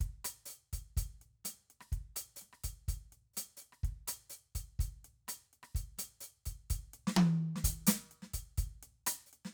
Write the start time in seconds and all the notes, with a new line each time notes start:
0.01 kick, closed hi-hat
0.25 closed hi-hat, cross-stick
0.46 closed hi-hat, hi-hat pedal
0.73 closed hi-hat, kick
0.97 closed hi-hat, kick
1.22 closed hi-hat
1.45 closed hi-hat, snare
1.71 closed hi-hat
1.81 cross-stick, snare
1.92 kick, closed hi-hat
2.16 closed hi-hat, cross-stick
2.37 hi-hat pedal
2.42 snare, closed hi-hat
2.53 cross-stick
2.64 closed hi-hat, kick
2.88 closed hi-hat, kick
3.13 closed hi-hat
3.34 closed hi-hat, snare, hi-hat pedal
3.57 hi-hat pedal
3.62 closed hi-hat
3.73 cross-stick
3.84 kick, closed hi-hat
4.08 closed hi-hat, cross-stick
4.30 closed hi-hat, hi-hat pedal
4.56 closed hi-hat, kick
4.80 closed hi-hat, kick
5.05 closed hi-hat
5.28 closed hi-hat, cross-stick, snare
5.53 closed hi-hat
5.63 cross-stick, snare
5.75 closed hi-hat, kick
5.98 closed hi-hat, snare
6.21 closed hi-hat, hi-hat pedal
6.46 closed hi-hat, kick
6.71 closed hi-hat, kick
6.94 closed hi-hat
7.08 snare
7.17 high tom
7.56 snare
7.64 closed hi-hat, kick
7.70 kick
7.87 open hi-hat, snare
8.12 closed hi-hat
8.23 snare
8.34 closed hi-hat, kick
8.58 closed hi-hat, kick
8.83 closed hi-hat
9.07 closed hi-hat, cross-stick
9.27 hi-hat pedal
9.33 closed hi-hat
9.45 snare